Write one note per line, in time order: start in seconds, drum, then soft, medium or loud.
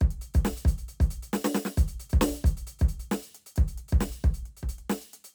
0.01 kick loud
0.01 closed hi-hat soft
0.11 closed hi-hat medium
0.22 closed hi-hat medium
0.34 closed hi-hat medium
0.34 kick loud
0.45 snare loud
0.57 closed hi-hat medium
0.65 closed hi-hat medium
0.65 kick loud
0.78 closed hi-hat medium
0.89 closed hi-hat medium
1.00 closed hi-hat medium
1.00 kick loud
1.11 closed hi-hat medium
1.23 closed hi-hat medium
1.33 snare loud
1.45 snare loud
1.55 snare loud
1.65 snare loud
1.78 closed hi-hat medium
1.78 kick loud
1.88 closed hi-hat medium
2.00 closed hi-hat medium
2.10 closed hi-hat medium
2.10 kick loud
2.21 snare loud
2.35 closed hi-hat medium
2.44 closed hi-hat medium
2.44 kick loud
2.57 closed hi-hat medium
2.67 closed hi-hat medium
2.79 closed hi-hat medium
2.79 kick loud
2.89 closed hi-hat medium
3.00 closed hi-hat medium
3.12 snare loud
3.22 closed hi-hat medium
3.35 closed hi-hat medium
3.46 closed hi-hat medium
3.56 kick loud
3.56 closed hi-hat medium
3.68 closed hi-hat medium
3.78 closed hi-hat medium
3.89 closed hi-hat medium
3.93 kick loud
4.01 snare loud
4.12 closed hi-hat soft
4.24 kick loud
4.24 closed hi-hat soft
4.34 closed hi-hat medium
4.46 closed hi-hat soft
4.57 closed hi-hat medium
4.63 kick medium
4.69 closed hi-hat medium
4.79 closed hi-hat soft
4.90 snare loud
5.02 closed hi-hat medium
5.14 closed hi-hat medium
5.24 closed hi-hat medium